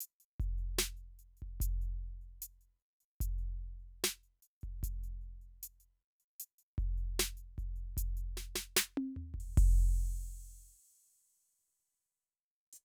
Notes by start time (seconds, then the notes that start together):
0.01 closed hi-hat
0.21 closed hi-hat
0.40 kick, closed hi-hat
0.59 closed hi-hat
0.79 snare
0.97 closed hi-hat
1.19 closed hi-hat
1.37 closed hi-hat
1.43 kick
1.61 closed hi-hat, kick
1.82 closed hi-hat
2.22 closed hi-hat
2.42 closed hi-hat
2.61 closed hi-hat
2.80 closed hi-hat
3.01 closed hi-hat
3.21 closed hi-hat, kick
3.39 closed hi-hat
3.80 closed hi-hat
4.04 snare
4.24 closed hi-hat
4.43 closed hi-hat
4.62 kick, closed hi-hat
4.83 closed hi-hat, kick
5.04 closed hi-hat
5.22 closed hi-hat
5.42 closed hi-hat
5.63 closed hi-hat
5.81 closed hi-hat
6.20 closed hi-hat
6.40 closed hi-hat
6.59 closed hi-hat
6.79 kick, closed hi-hat
6.98 closed hi-hat
7.20 snare
7.38 closed hi-hat
7.59 kick, closed hi-hat
7.76 closed hi-hat
7.98 closed hi-hat, kick
8.17 closed hi-hat
8.38 snare
8.56 snare
8.77 snare
8.98 high tom
9.17 floor tom
9.35 kick
9.41 crash
9.58 kick, crash
12.73 hi-hat pedal